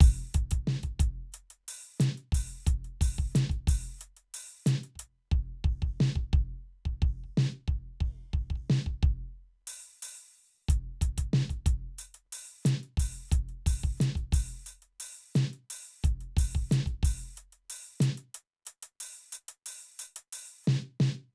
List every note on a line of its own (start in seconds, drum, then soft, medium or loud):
0.01 open hi-hat loud
0.01 kick loud
0.31 closed hi-hat loud
0.31 kick medium
0.31 hi-hat pedal soft
0.51 closed hi-hat loud
0.51 kick medium
0.68 snare loud
0.83 kick soft
0.83 closed hi-hat medium
1.00 open hi-hat loud
1.00 kick medium
1.33 closed hi-hat loud
1.33 hi-hat pedal soft
1.51 closed hi-hat medium
1.68 open hi-hat loud
1.98 closed hi-hat loud
1.98 snare loud
1.98 hi-hat pedal medium
2.18 closed hi-hat soft
2.33 open hi-hat loud
2.33 kick medium
2.65 closed hi-hat loud
2.65 kick medium
2.65 hi-hat pedal medium
2.85 closed hi-hat soft
3.01 open hi-hat loud
3.01 kick medium
3.19 kick medium
3.32 snare loud
3.32 hi-hat pedal medium
3.36 closed hi-hat loud
3.50 kick medium
3.50 closed hi-hat soft
3.68 open hi-hat loud
3.68 kick medium
3.99 closed hi-hat loud
3.99 hi-hat pedal medium
4.17 closed hi-hat medium
4.34 open hi-hat loud
4.66 closed hi-hat loud
4.66 snare loud
4.66 hi-hat pedal medium
4.84 closed hi-hat medium
4.96 closed hi-hat loud
4.96 kick soft
5.32 kick medium
5.65 kick medium
5.70 crash soft
5.83 kick medium
5.87 snare soft
5.87 crash soft
5.87 ride soft
6.01 snare loud
6.16 kick medium
6.33 kick medium
6.86 kick medium
7.02 kick medium
7.08 crash soft
7.24 kick soft
7.38 snare loud
7.68 kick medium
7.68 snare soft
8.01 kick medium
8.01 snare soft
8.01 crash soft
8.05 high tom soft
8.05 ride soft
8.34 kick medium
8.38 snare soft
8.38 crash soft
8.51 kick soft
8.56 kick soft
8.56 snare soft
8.56 crash soft
8.56 ride soft
8.70 snare loud
8.87 kick soft
9.03 kick medium
9.68 open hi-hat loud
10.03 open hi-hat loud
10.69 closed hi-hat loud
10.69 kick medium
10.69 hi-hat pedal medium
11.02 closed hi-hat loud
11.02 kick medium
11.18 closed hi-hat loud
11.18 kick medium
11.34 snare loud
11.50 kick soft
11.50 closed hi-hat medium
11.66 open hi-hat loud
11.66 kick medium
11.98 open hi-hat loud
11.98 hi-hat pedal medium
12.15 closed hi-hat medium
12.33 open hi-hat loud
12.63 closed hi-hat loud
12.63 snare loud
12.63 hi-hat pedal medium
12.83 closed hi-hat soft
12.98 open hi-hat loud
12.98 kick medium
13.29 closed hi-hat loud
13.29 kick medium
13.29 hi-hat pedal medium
13.49 closed hi-hat soft
13.67 open hi-hat loud
13.67 kick medium
13.84 kick medium
13.98 snare loud
13.98 hi-hat pedal medium
14.02 closed hi-hat loud
14.16 kick medium
14.16 closed hi-hat soft
14.32 open hi-hat loud
14.32 kick medium
14.32 hi-hat pedal soft
14.66 open hi-hat loud
14.66 hi-hat pedal medium
14.83 closed hi-hat soft
15.00 open hi-hat loud
15.35 closed hi-hat medium
15.35 snare loud
15.35 hi-hat pedal medium
15.53 closed hi-hat soft
15.71 open hi-hat loud
16.03 closed hi-hat loud
16.03 kick medium
16.03 hi-hat pedal medium
16.21 closed hi-hat soft
16.37 open hi-hat loud
16.37 kick medium
16.55 kick medium
16.70 closed hi-hat loud
16.70 snare loud
16.70 hi-hat pedal medium
16.86 kick soft
16.86 closed hi-hat soft
17.03 open hi-hat loud
17.03 kick medium
17.03 hi-hat pedal soft
17.36 closed hi-hat medium
17.36 hi-hat pedal medium
17.53 closed hi-hat medium
17.70 open hi-hat loud
18.00 closed hi-hat loud
18.00 snare loud
18.00 hi-hat pedal medium
18.18 closed hi-hat medium
18.35 open hi-hat loud
18.66 closed hi-hat loud
18.66 hi-hat pedal medium
18.83 closed hi-hat loud
19.01 open hi-hat loud
19.33 open hi-hat loud
19.33 hi-hat pedal medium
19.49 closed hi-hat loud
19.66 open hi-hat loud
19.99 open hi-hat loud
19.99 hi-hat pedal medium
20.17 closed hi-hat loud
20.33 open hi-hat loud
20.64 snare loud
20.64 hi-hat pedal medium
21.01 snare loud